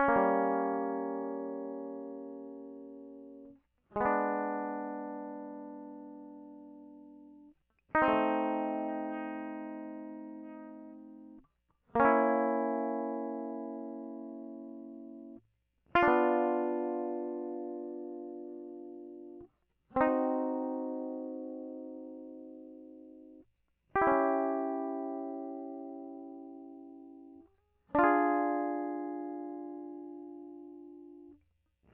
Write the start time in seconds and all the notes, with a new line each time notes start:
0.00 C#4
0.09 A#3
0.17 G3
3.97 G#3
4.01 B3
4.06 D4
7.95 D#4
8.03 C4
8.09 A3
11.96 A#3
12.00 C#4
12.05 E4
15.96 F4
16.03 D4
16.08 B3
19.97 C4
20.01 D#4
23.96 G4
24.02 E4
24.08 C#4
27.95 D4 F4
28.04 G#4